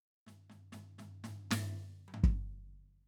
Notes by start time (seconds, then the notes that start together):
0.26 snare, floor tom
0.50 snare, floor tom
0.72 snare, floor tom
0.98 snare, floor tom
1.24 snare, floor tom
1.51 snare, floor tom
2.08 high tom
2.14 floor tom
2.24 kick